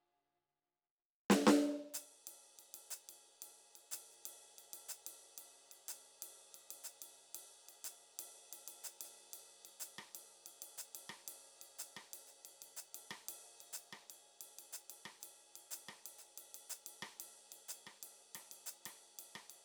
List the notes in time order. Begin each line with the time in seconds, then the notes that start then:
1.30 snare
1.47 snare
1.94 hi-hat pedal, ride
2.27 ride
2.59 ride
2.74 ride
2.90 hi-hat pedal
3.09 ride
3.42 ride
3.75 ride
3.91 hi-hat pedal, ride
4.11 hi-hat pedal
4.25 ride
4.58 ride
4.73 ride
4.89 hi-hat pedal
5.06 ride
5.38 ride
5.71 ride
5.88 hi-hat pedal, ride
6.22 ride
6.54 ride
6.70 ride
6.84 hi-hat pedal
7.02 ride
7.35 ride
7.69 ride
7.84 hi-hat pedal, ride
8.19 ride
8.53 ride
8.68 ride
8.84 hi-hat pedal
9.01 hi-hat pedal, ride
9.33 ride
9.65 ride
9.80 hi-hat pedal, ride
9.98 cross-stick
10.15 ride
10.46 ride
10.62 ride
10.78 hi-hat pedal
10.95 ride
11.09 cross-stick
11.28 ride
11.61 ride
11.79 hi-hat pedal, ride
11.96 cross-stick
12.13 ride
12.27 hi-hat pedal
12.45 ride
12.62 ride
12.76 hi-hat pedal
12.94 ride
13.11 cross-stick
13.28 ride
13.60 ride
13.73 hi-hat pedal
13.77 ride
13.93 cross-stick
14.10 ride
14.41 ride
14.59 ride
14.73 hi-hat pedal
14.90 ride
15.05 cross-stick
15.20 hi-hat pedal, ride
15.55 ride
15.71 hi-hat pedal, ride
15.88 cross-stick
16.06 ride
16.18 hi-hat pedal
16.37 ride
16.54 ride
16.70 hi-hat pedal
16.86 ride
17.02 cross-stick
17.20 ride
17.52 ride
17.68 hi-hat pedal, ride
17.87 cross-stick
18.03 ride
18.35 cross-stick, ride
18.51 ride
18.66 hi-hat pedal
18.85 cross-stick, ride
19.19 ride
19.35 cross-stick
19.50 ride